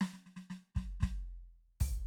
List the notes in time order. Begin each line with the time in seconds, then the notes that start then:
0.01 snare, hi-hat pedal
0.14 snare
0.26 snare
0.37 snare
0.50 snare
0.75 kick, snare
0.77 snare
1.01 kick, snare
1.03 snare
1.81 open hi-hat, kick, floor tom